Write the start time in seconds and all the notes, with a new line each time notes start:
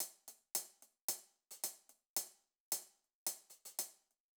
0.01 closed hi-hat
0.28 closed hi-hat
0.55 closed hi-hat
0.82 closed hi-hat
1.08 closed hi-hat
1.51 closed hi-hat
1.64 closed hi-hat
1.89 closed hi-hat
2.16 closed hi-hat
2.72 closed hi-hat
3.04 closed hi-hat
3.26 closed hi-hat
3.50 closed hi-hat
3.65 closed hi-hat
3.79 closed hi-hat
4.11 closed hi-hat